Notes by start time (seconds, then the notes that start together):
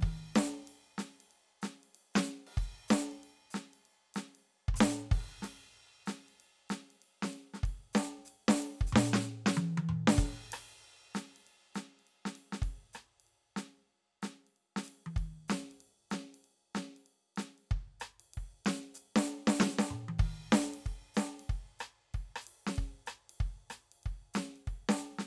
0.01 kick, crash
0.36 snare, ride
0.68 ride
0.98 snare, hi-hat pedal, ride
1.21 ride
1.31 ride
1.62 snare, hi-hat pedal, ride
1.83 ride
1.95 ride
2.14 snare, hi-hat pedal
2.26 ride
2.47 crash
2.57 kick, hi-hat pedal, ride
2.88 snare, hi-hat pedal
3.12 ride
3.24 ride
3.51 snare, hi-hat pedal, ride
3.74 ride
3.86 ride
4.14 snare, hi-hat pedal, ride
4.35 ride
4.68 kick
4.74 hi-hat pedal, mid tom
4.81 snare
5.12 kick, crash
5.43 snare, hi-hat pedal, ride
5.73 ride
6.06 snare, hi-hat pedal, ride
6.29 ride
6.40 ride
6.70 snare, hi-hat pedal, ride
6.91 ride
7.02 ride
7.23 snare, hi-hat pedal
7.33 ride
7.54 snare
7.63 kick, ride
7.93 snare, hi-hat pedal, ride
8.25 hi-hat pedal, ride
8.48 snare, hi-hat pedal
8.63 ride
8.81 kick
8.87 hi-hat pedal
8.93 snare, mid tom
9.14 snare
9.21 snare
9.46 snare
9.57 high tom
9.78 high tom
9.89 mid tom
10.08 snare
10.18 kick, crash
10.52 cross-stick, ride
10.85 ride
11.15 snare, hi-hat pedal, ride
11.36 ride
11.47 ride
11.75 snare, hi-hat pedal
11.99 ride
12.07 ride
12.26 snare
12.36 ride
12.53 snare
12.62 kick, ride
12.93 cross-stick, hi-hat pedal
13.20 ride
13.27 ride
13.57 snare, hi-hat pedal, ride
14.23 snare, hi-hat pedal, ride
14.47 ride
14.56 ride
14.76 snare
14.84 hi-hat pedal
14.88 ride
15.06 high tom
15.16 kick, ride
15.48 snare, hi-hat pedal, ride
15.71 ride
15.81 ride
16.11 snare, hi-hat pedal, ride
16.35 ride
16.44 ride
16.75 snare, hi-hat pedal, ride
16.97 ride
17.06 ride
17.36 snare, hi-hat pedal, ride
17.58 ride
17.71 kick
18.00 cross-stick, hi-hat pedal
18.20 ride
18.34 kick, ride
18.65 snare, ride
18.70 hi-hat pedal
18.83 ride
18.95 hi-hat pedal, ride
19.16 snare
19.21 hi-hat pedal
19.28 ride
19.48 snare
19.53 hi-hat pedal
19.60 snare
19.79 snare
19.84 hi-hat pedal
19.91 mid tom
20.09 high tom
20.19 kick, crash
20.43 kick
20.53 snare, ride
20.74 ride
20.86 kick, ride
21.14 snare, hi-hat pedal, ride
21.40 ride
21.50 kick, ride
21.79 cross-stick, hi-hat pedal
22.14 kick, ride
22.29 kick
22.36 cross-stick
22.41 hi-hat pedal
22.47 ride
22.67 snare
22.76 kick, ride
23.07 cross-stick, hi-hat pedal
23.30 ride
23.40 kick
23.70 cross-stick, hi-hat pedal, ride
23.92 ride
24.03 kick, ride
24.34 snare, hi-hat pedal, ride
24.56 ride
24.68 kick, ride
24.89 snare, hi-hat pedal
25.00 ride
25.19 snare